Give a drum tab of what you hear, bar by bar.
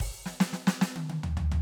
HH |o-----------|
SD |--ooooo-----|
T1 |-------oo---|
FT |---------ooo|
BD |o-----------|